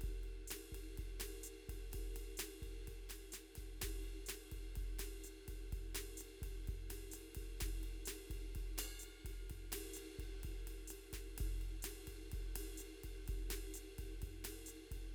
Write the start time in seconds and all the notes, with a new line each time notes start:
0.01 kick, ride
0.06 kick, snare
0.23 ride
0.47 snare, hi-hat pedal
0.51 ride
0.72 kick, ride
0.98 kick, ride
1.04 kick
1.20 snare, ride
1.43 hi-hat pedal, ride
1.69 kick, ride
1.74 kick
1.92 kick, snare, ride
1.99 kick
2.14 snare, ride
2.30 snare
2.37 snare, hi-hat pedal, ride
2.62 kick, ride
2.67 kick
2.87 kick, ride
2.93 kick
3.09 snare, ride
3.32 snare, hi-hat pedal, ride
3.55 kick, snare, ride
3.81 kick, snare, ride
3.88 kick
4.04 ride
4.26 snare, hi-hat pedal, ride
4.51 kick, ride
4.57 kick
4.75 kick, ride
4.82 kick
4.99 snare, ride
5.24 hi-hat pedal, ride
5.48 kick, ride
5.53 kick
5.72 kick, ride
5.78 kick
5.94 snare, ride
6.17 hi-hat pedal, ride
6.42 kick, ride
6.47 kick
6.67 kick, ride
6.74 kick
6.90 snare, ride
7.11 snare, hi-hat pedal, ride
7.35 kick, snare, ride
7.42 kick
7.58 kick, snare, hi-hat pedal, ride
7.67 kick
7.83 ride
8.05 snare, hi-hat pedal, ride
8.30 kick, ride
8.35 kick
8.55 kick, ride
8.61 kick
8.77 snare, ride bell
8.99 hi-hat pedal
9.03 ride
9.25 kick, ride
9.30 kick
9.50 kick, ride
9.56 kick
9.72 snare, ride
9.93 hi-hat pedal, ride
10.19 kick, ride
10.24 kick
10.43 kick, ride
10.50 kick
10.67 snare, ride
10.87 snare, hi-hat pedal, ride
11.13 kick, snare, ride
11.25 snare
11.37 kick, snare, ride
11.46 kick
11.61 ride
11.82 snare, hi-hat pedal, ride
12.07 kick, ride
12.32 kick, ride
12.38 kick
12.55 snare, ride
12.77 hi-hat pedal, ride
13.04 kick, ride
13.25 kick, hi-hat pedal, ride
13.34 kick
13.50 snare, ride
13.74 hi-hat pedal, ride
13.98 kick, ride
14.04 kick
14.22 kick, ride
14.28 kick
14.44 snare, ride
14.66 hi-hat pedal, ride
14.91 kick, ride
14.96 kick